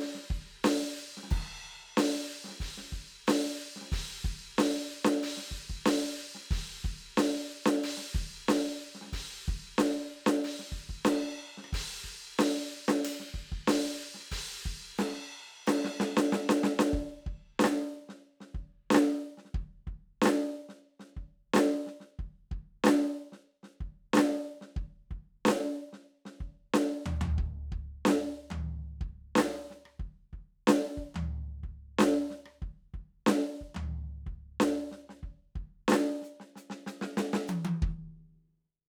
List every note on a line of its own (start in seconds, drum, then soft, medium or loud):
0.01 crash medium
0.15 snare soft
0.30 kick medium
0.64 snare loud
0.64 crash loud
0.73 cross-stick soft
0.81 snare soft
0.98 hi-hat pedal medium
1.17 snare soft
1.23 snare soft
1.27 kick medium
1.27 snare soft
1.27 crash loud
1.97 snare loud
1.97 crash loud
2.44 snare soft
2.48 snare soft
2.51 cross-stick soft
2.51 snare soft
2.60 kick medium
2.60 crash medium
2.78 snare soft
2.92 kick medium
3.27 snare loud
3.27 crash loud
3.76 snare soft
3.81 snare soft
3.85 snare soft
3.92 kick medium
3.92 crash loud
4.24 kick medium
4.58 snare loud
4.58 crash loud
4.64 cross-stick medium
5.05 snare loud
5.23 crash loud
5.37 snare soft
5.51 kick soft
5.70 kick medium
5.86 snare loud
5.86 crash loud
6.35 snare soft
6.41 cross-stick soft
6.47 kick medium
6.47 snare soft
6.52 crash loud
6.85 kick medium
7.18 snare loud
7.18 crash loud
7.31 snare soft
7.66 snare loud
7.74 snare soft
7.84 crash loud
7.97 snare soft
8.15 kick medium
8.49 snare loud
8.49 crash loud
8.57 snare soft
8.63 snare soft
8.95 snare soft
9.01 snare soft
9.04 snare soft
9.07 snare soft
9.13 kick medium
9.13 crash loud
9.48 kick medium
9.78 snare loud
9.78 crash medium
9.93 snare soft
10.26 snare loud
10.44 crash medium
10.59 snare soft
10.72 kick medium
10.89 kick soft
11.05 snare loud
11.05 crash loud
11.57 snare soft
11.64 cross-stick medium
11.68 cross-stick soft
11.73 kick medium
11.73 crash loud
12.04 kick soft
12.39 snare loud
12.39 crash loud
12.88 snare loud
13.05 crash loud
13.20 snare soft
13.34 kick medium
13.52 kick medium
13.68 snare loud
13.68 crash loud
14.14 snare soft
14.21 cross-stick soft
14.32 kick medium
14.32 crash loud
14.66 kick medium
14.99 snare loud
14.99 crash loud
15.67 snare loud
15.67 crash loud
15.85 snare medium
16.00 snare loud
16.17 snare loud
16.32 snare loud
16.49 snare loud
16.64 snare loud
16.79 snare loud
16.93 kick medium
17.26 kick medium
17.60 snare loud
17.64 snare loud
18.09 snare medium
18.41 snare soft
18.55 kick medium
18.91 snare loud
18.95 snare loud
19.38 snare soft
19.45 snare soft
19.54 kick medium
19.87 kick soft
20.22 snare loud
20.26 snare loud
20.69 snare soft
21.00 snare soft
21.17 kick soft
21.54 snare loud
21.56 snare loud
21.87 snare soft
22.00 snare soft
22.19 kick medium
22.51 kick medium
22.84 snare loud
22.87 snare loud
23.32 snare soft
23.63 snare soft
23.81 kick medium
24.14 snare loud
24.17 snare loud
24.61 snare soft
24.76 kick medium
25.11 kick soft
25.45 snare loud
25.49 snare loud
25.93 snare soft
26.26 snare medium
26.40 kick soft
26.74 snare loud
27.06 floor tom loud
27.21 floor tom loud
27.38 kick medium
27.72 kick medium
28.05 snare loud
28.08 snare loud
28.51 floor tom loud
28.51 high tom medium
29.01 kick medium
29.36 snare loud
29.38 snare loud
29.70 snare soft
29.86 cross-stick soft
30.00 kick medium
30.33 kick soft
30.67 snare loud
30.97 kick soft
31.15 floor tom loud
31.15 high tom medium
31.63 kick soft
31.99 snare loud
32.01 snare loud
32.30 snare soft
32.46 cross-stick soft
32.62 kick medium
32.94 kick soft
33.27 snare loud
33.28 snare loud
33.61 kick soft
33.75 floor tom loud
33.75 high tom medium
34.27 kick soft
34.60 snare loud
34.92 snare soft
35.09 snare soft
35.23 kick soft
35.56 kick medium
35.88 snare loud
35.92 snare loud
36.22 snare soft
36.22 hi-hat pedal medium
36.40 snare soft
36.56 snare soft
36.56 hi-hat pedal medium
36.70 snare medium
36.87 snare medium
36.87 hi-hat pedal medium
37.01 snare medium
37.17 snare loud
37.17 hi-hat pedal medium
37.33 snare loud
37.48 hi-hat pedal medium
37.48 high tom loud
37.65 high tom loud
37.82 kick medium